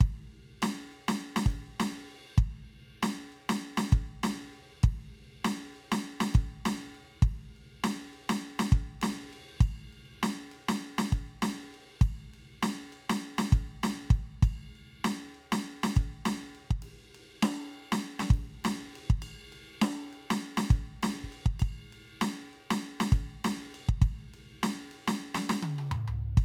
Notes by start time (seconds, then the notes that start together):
0.01 kick, ride
0.33 ride
0.62 snare, ride bell
0.92 ride bell
1.09 snare
1.36 snare
1.46 kick
1.51 ride
1.80 snare, ride
2.11 ride bell
2.38 kick, ride bell
2.74 ride
3.03 snare, ride bell
3.32 ride
3.50 snare
3.78 snare
3.92 kick, ride bell
4.24 snare, ride
4.55 ride
4.84 kick, ride
5.15 ride
5.45 snare, ride
5.76 ride bell
5.92 snare
6.21 snare
6.34 kick, ride bell
6.66 snare, ride bell
6.95 ride
7.23 kick, ride
7.57 ride
7.84 snare, ride
8.14 ride
8.30 snare
8.60 snare
8.72 kick, snare, ride
9.02 snare, ride
9.33 ride
9.61 kick, ride bell
9.93 ride
10.23 snare, ride
10.52 ride
10.69 snare
10.99 snare
11.13 kick, ride bell
11.43 snare, ride
11.75 ride
12.02 kick, ride bell
12.34 ride
12.63 snare, ride bell
12.93 ride bell
13.10 snare
13.39 snare
13.53 kick, ride bell
13.84 snare, ride bell
14.11 kick, ride bell
14.43 kick, ride bell
14.76 ride bell
15.05 snare, ride
15.35 ride bell
15.52 snare
15.65 ride
15.84 snare
15.96 kick, ride bell
16.26 snare, ride bell
16.55 ride
16.71 kick
16.82 ride
17.15 ride
17.43 snare, ride bell
17.74 ride bell
17.92 snare
18.05 ride
18.20 snare
18.31 kick, ride
18.65 snare, ride
18.96 ride
19.10 kick
19.22 ride bell
19.53 ride
19.82 snare, ride bell
20.13 ride
20.31 snare
20.58 snare
20.71 kick, ride bell
21.03 snare, ride
21.24 kick
21.32 ride bell
21.46 kick
21.60 kick, ride bell
21.93 ride
22.21 snare, ride bell
22.53 ride
22.71 snare
23.00 snare
23.12 kick, ride bell
23.45 snare, ride
23.75 ride bell
23.89 kick
24.02 kick, ride bell
24.34 ride
24.63 snare, ride bell
24.92 ride
25.08 snare
25.35 snare
25.50 snare
25.63 high tom
25.79 high tom
25.92 mid tom
26.08 floor tom
26.38 kick, ride bell, crash